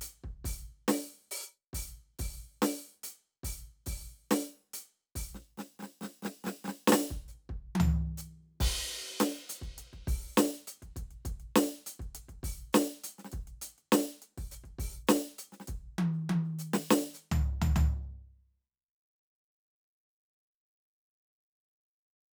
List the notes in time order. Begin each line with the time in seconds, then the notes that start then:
0.01 open hi-hat
0.24 kick
0.44 open hi-hat, kick, ride
0.88 open hi-hat, snare
0.93 cross-stick
1.31 open hi-hat
1.73 open hi-hat, kick
2.19 open hi-hat, kick
2.62 open hi-hat, snare
3.03 open hi-hat
3.43 open hi-hat, kick
3.86 open hi-hat, kick
4.31 open hi-hat, snare
4.73 open hi-hat
5.15 open hi-hat, kick
5.34 snare
5.57 snare
5.79 snare
5.82 snare
6.01 snare
6.03 snare
6.22 snare
6.25 snare
6.44 snare
6.47 snare
6.64 snare
6.68 snare
6.87 snare
6.92 snare
7.10 kick
7.28 hi-hat pedal
7.49 kick
7.75 high tom
7.80 floor tom
8.17 hi-hat pedal
8.60 kick, crash, ride
8.93 closed hi-hat
9.05 closed hi-hat
9.20 snare, closed hi-hat
9.35 closed hi-hat
9.49 closed hi-hat
9.61 kick, closed hi-hat
9.78 closed hi-hat
9.93 kick, closed hi-hat
10.07 open hi-hat, kick
10.37 snare, closed hi-hat, hi-hat pedal
10.42 cross-stick
10.54 closed hi-hat
10.67 closed hi-hat
10.82 kick, closed hi-hat
10.96 kick, closed hi-hat
11.11 closed hi-hat
11.25 kick, closed hi-hat
11.40 closed hi-hat
11.56 snare, closed hi-hat
11.71 closed hi-hat
11.86 closed hi-hat
11.99 kick, closed hi-hat
12.15 closed hi-hat
12.28 kick, closed hi-hat
12.43 open hi-hat, kick
12.73 snare, closed hi-hat, hi-hat pedal
12.89 closed hi-hat
13.04 closed hi-hat
13.18 snare, closed hi-hat
13.24 snare
13.32 kick, closed hi-hat
13.47 closed hi-hat
13.61 closed hi-hat
13.78 closed hi-hat
13.92 snare, closed hi-hat
13.97 snare
14.08 closed hi-hat
14.22 closed hi-hat
14.37 kick, open hi-hat
14.51 hi-hat pedal
14.64 kick, closed hi-hat
14.78 open hi-hat, kick
15.07 snare, closed hi-hat, hi-hat pedal
15.24 closed hi-hat
15.38 closed hi-hat
15.52 snare, closed hi-hat
15.60 snare
15.67 kick, closed hi-hat
15.98 high tom
16.13 snare
16.29 high tom
16.44 snare
16.59 hi-hat pedal
16.73 snare
16.91 snare
17.14 hi-hat pedal
17.31 floor tom
17.62 floor tom
17.76 floor tom